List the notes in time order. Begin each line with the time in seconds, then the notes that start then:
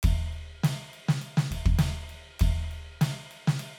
0.03 kick, ride
0.33 ride
0.64 snare, ride
0.94 ride
1.09 snare
1.22 ride
1.38 snare
1.51 kick, ride
1.66 kick
1.79 snare, ride
2.10 ride
2.40 kick, ride
2.71 ride
3.01 snare, ride
3.31 ride
3.48 snare
3.60 ride